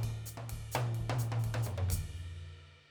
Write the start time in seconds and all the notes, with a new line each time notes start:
0.01 kick, hi-hat pedal, ride bell
0.26 hi-hat pedal, ride
0.38 mid tom
0.50 kick, ride
0.60 kick
0.72 hi-hat pedal, mid tom
0.95 ride
1.00 kick
1.06 kick, mid tom
1.19 hi-hat pedal, ride
1.32 mid tom
1.39 hi-hat pedal
1.44 kick, ride
1.54 mid tom
1.63 floor tom, hi-hat pedal
1.78 floor tom
1.89 kick, hi-hat pedal, ride, floor tom
2.02 kick
2.16 hi-hat pedal